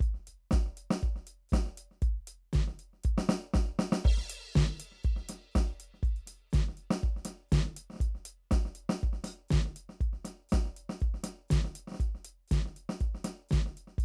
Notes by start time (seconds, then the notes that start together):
0.01 kick, closed hi-hat
0.15 snare
0.20 snare
0.28 kick, closed hi-hat
0.51 kick, snare, closed hi-hat
0.67 snare
0.78 closed hi-hat
0.91 snare
1.02 kick, closed hi-hat
1.16 snare
1.27 open hi-hat
1.49 kick, hi-hat pedal
1.54 snare, closed hi-hat
1.67 snare
1.78 closed hi-hat
1.92 snare
2.02 kick, closed hi-hat
2.28 closed hi-hat
2.53 kick, snare, closed hi-hat
2.68 snare
2.79 closed hi-hat
2.94 snare
3.04 kick, closed hi-hat
3.18 snare
3.29 snare
3.54 kick, snare
3.65 snare
3.79 snare
3.93 snare
4.05 kick, crash
4.18 snare
4.30 open hi-hat
4.54 kick, snare, closed hi-hat, hi-hat pedal
4.70 snare
4.80 closed hi-hat
4.92 snare
5.04 kick, closed hi-hat
5.17 snare
5.29 open hi-hat, snare
5.52 snare, hi-hat pedal
5.56 kick, closed hi-hat
5.80 closed hi-hat
5.94 snare
6.03 kick, closed hi-hat
6.17 closed hi-hat
6.27 open hi-hat, snare
6.51 kick, snare, closed hi-hat, hi-hat pedal
6.69 snare
6.77 closed hi-hat
6.91 snare
7.03 kick, closed hi-hat
7.17 snare
7.25 closed hi-hat, snare
7.49 kick, snare, closed hi-hat, hi-hat pedal
7.65 snare
7.77 closed hi-hat
7.91 snare
7.94 snare
7.96 snare
8.01 closed hi-hat, kick
8.15 snare
8.26 closed hi-hat
8.51 kick, snare, closed hi-hat
8.66 snare
8.76 closed hi-hat
8.90 snare
9.02 kick, closed hi-hat
9.13 snare
9.24 open hi-hat, snare
9.49 snare, closed hi-hat, hi-hat pedal
9.53 kick
9.66 snare
9.76 closed hi-hat
9.90 snare
10.01 kick, closed hi-hat
10.14 snare
10.25 snare, open hi-hat
10.49 snare, closed hi-hat, hi-hat pedal
10.54 kick
10.66 snare
10.77 closed hi-hat
10.90 snare
11.01 kick, closed hi-hat
11.15 snare
11.24 snare, open hi-hat
11.49 kick, snare, closed hi-hat, hi-hat pedal
11.65 snare
11.76 closed hi-hat
11.88 snare
11.92 snare
11.95 snare
12.00 kick, closed hi-hat
12.15 snare
12.25 open hi-hat
12.48 kick, snare, closed hi-hat, hi-hat pedal
12.66 snare
12.77 closed hi-hat
12.90 snare
13.01 kick, closed hi-hat
13.15 snare
13.25 snare, open hi-hat
13.49 snare, closed hi-hat, hi-hat pedal
13.54 kick
13.67 snare
13.78 closed hi-hat
13.88 snare
13.99 kick, closed hi-hat